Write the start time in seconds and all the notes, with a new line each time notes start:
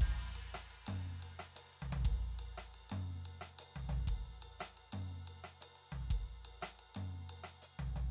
0.01 kick, ride
0.35 ride
0.53 cross-stick, hi-hat pedal
0.71 ride
0.87 mid tom, ride
1.23 ride
1.39 cross-stick
1.56 hi-hat pedal, ride
1.71 ride
1.82 floor tom
1.92 floor tom
2.05 kick, ride
2.39 ride
2.58 cross-stick, hi-hat pedal
2.74 ride
2.90 mid tom, ride
3.26 ride
3.41 cross-stick
3.59 hi-hat pedal, ride
3.76 floor tom
3.89 floor tom
4.07 kick, ride
4.42 ride
4.59 cross-stick, hi-hat pedal
4.77 ride
4.93 mid tom, ride
5.28 ride
5.44 cross-stick
5.61 hi-hat pedal, ride
5.76 ride
5.92 floor tom
6.10 kick, ride
6.45 ride
6.61 cross-stick, hi-hat pedal
6.79 ride
6.95 mid tom, ride
7.30 ride
7.44 cross-stick
7.62 hi-hat pedal, ride bell
7.79 floor tom
7.96 floor tom